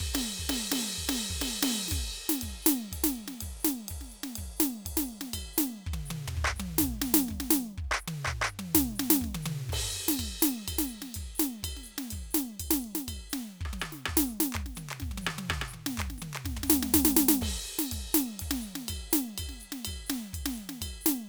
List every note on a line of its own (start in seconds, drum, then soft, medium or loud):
0.01 kick soft
0.08 kick soft
0.14 snare loud
0.14 crash loud
0.40 kick soft
0.50 snare medium
0.50 crash loud
0.72 snare loud
0.72 crash loud
0.82 snare soft
0.98 kick soft
1.04 kick soft
1.09 snare loud
1.09 crash loud
1.30 kick soft
1.37 kick soft
1.41 snare medium
1.41 crash loud
1.63 snare loud
1.63 crash loud
1.71 snare soft
1.89 kick medium
1.89 snare soft
1.89 ride loud
2.01 kick soft
2.13 hi-hat pedal soft
2.13 ride soft
2.30 snare medium
2.42 kick soft
2.42 ride loud
2.49 kick soft
2.63 hi-hat pedal medium
2.67 snare loud
2.92 kick soft
2.92 ride loud
3.04 snare loud
3.11 hi-hat pedal medium
3.16 ride soft
3.28 snare medium
3.41 kick soft
3.41 ride loud
3.60 hi-hat pedal medium
3.65 snare loud
3.89 kick soft
3.89 ride loud
3.97 kick soft
4.01 snare soft
4.09 hi-hat pedal medium
4.09 ride soft
4.24 snare medium
4.36 kick soft
4.36 ride loud
4.44 kick soft
4.57 snare loud
4.57 hi-hat pedal medium
4.86 kick soft
4.86 ride loud
4.92 kick soft
4.97 snare medium
5.04 hi-hat pedal medium
5.09 ride soft
5.21 snare medium
5.34 kick soft
5.34 ride bell loud
5.54 hi-hat pedal medium
5.58 snare loud
5.70 snare soft
5.87 kick soft
5.93 kick soft
5.93 mid tom medium
6.06 hi-hat pedal medium
6.11 mid tom loud
6.28 floor tom loud
6.37 kick soft
6.44 kick soft
6.44 percussion loud
6.56 hi-hat pedal medium
6.56 high tom loud
6.79 kick soft
6.79 snare loud
6.88 kick soft
7.02 snare loud
7.02 hi-hat pedal medium
7.14 snare loud
7.29 kick soft
7.29 snare soft
7.41 snare medium
7.51 snare loud
7.51 hi-hat pedal medium
7.78 kick soft
7.85 kick soft
7.92 percussion loud
7.99 hi-hat pedal medium
8.08 mid tom loud
8.25 kick soft
8.25 percussion loud
8.34 kick soft
8.42 percussion loud
8.47 hi-hat pedal medium
8.59 high tom medium
8.75 kick soft
8.75 snare loud
8.91 snare soft
8.96 snare loud
8.96 hi-hat pedal medium
9.11 snare loud
9.22 kick soft
9.22 snare soft
9.28 kick soft
9.35 mid tom loud
9.43 hi-hat pedal medium
9.43 mid tom loud
9.69 kick soft
9.69 snare soft
9.73 kick soft
9.73 crash loud
9.81 kick soft
9.90 hi-hat pedal medium
10.09 snare loud
10.19 kick soft
10.19 ride bell loud
10.40 snare loud
10.40 hi-hat pedal medium
10.61 hi-hat pedal soft
10.68 kick soft
10.68 ride bell loud
10.79 snare medium
10.88 hi-hat pedal medium
10.88 ride soft
11.02 snare medium
11.08 hi-hat pedal soft
11.15 kick soft
11.15 ride bell medium
11.36 hi-hat pedal medium
11.40 snare loud
11.64 kick soft
11.64 ride bell loud
11.77 snare soft
11.84 hi-hat pedal medium
11.84 ride soft
11.98 snare medium
12.11 kick soft
12.11 ride bell medium
12.31 snare loud
12.31 hi-hat pedal medium
12.60 kick soft
12.60 ride bell loud
12.71 snare loud
12.79 hi-hat pedal medium
12.85 ride soft
12.95 snare medium
13.08 kick soft
13.08 ride bell loud
13.14 kick soft
13.30 snare medium
13.30 hi-hat pedal medium
13.61 kick soft
13.66 kick soft
13.66 cross-stick medium
13.73 high tom medium
13.80 cross-stick loud
13.80 hi-hat pedal medium
13.93 snare soft
14.06 kick soft
14.06 cross-stick loud
14.15 kick soft
14.15 snare loud
14.28 hi-hat pedal medium
14.41 snare medium
14.53 kick soft
14.53 percussion loud
14.62 kick soft
14.66 snare soft
14.76 snare soft
14.76 hi-hat pedal medium
14.76 mid tom medium
14.89 percussion loud
15.00 kick soft
15.00 snare soft
15.09 kick soft
15.09 high tom medium
15.18 hi-hat pedal medium
15.18 high tom medium
15.27 cross-stick loud
15.39 high tom medium
15.50 kick soft
15.50 cross-stick loud
15.56 kick soft
15.62 cross-stick loud
15.68 hi-hat pedal medium
15.74 mid tom medium
15.87 snare medium
15.98 kick soft
15.98 percussion loud
16.05 kick soft
16.10 snare soft
16.18 snare soft
16.18 hi-hat pedal medium
16.22 mid tom medium
16.33 percussion loud
16.45 kick soft
16.45 snare medium
16.51 kick soft
16.57 floor tom medium
16.64 snare medium
16.64 hi-hat pedal medium
16.70 snare loud
16.83 snare medium
16.94 kick soft
16.94 snare loud
17.02 kick soft
17.02 snare loud
17.16 snare loud
17.16 hi-hat pedal medium
17.29 snare loud
17.42 kick soft
17.42 crash loud
17.49 kick soft
17.54 kick soft
17.65 hi-hat pedal medium
17.79 snare medium
17.92 kick soft
17.92 ride loud
17.99 kick soft
18.13 snare loud
18.13 hi-hat pedal medium
18.40 kick soft
18.40 ride loud
18.48 kick soft
18.48 snare loud
18.61 hi-hat pedal medium
18.61 ride soft
18.76 snare medium
18.83 hi-hat pedal soft
18.89 kick soft
18.89 ride bell loud
19.11 snare loud
19.11 hi-hat pedal medium
19.38 kick soft
19.38 ride bell loud
19.45 kick soft
19.49 snare soft
19.60 hi-hat pedal medium
19.60 ride soft
19.73 snare medium
19.85 kick soft
19.85 ride bell loud
20.07 snare loud
20.07 hi-hat pedal medium
20.34 kick soft
20.34 ride bell medium
20.40 kick soft
20.46 snare medium
20.53 hi-hat pedal medium
20.58 ride soft
20.70 snare medium
20.82 kick soft
20.82 ride bell loud
21.01 hi-hat pedal medium
21.06 snare loud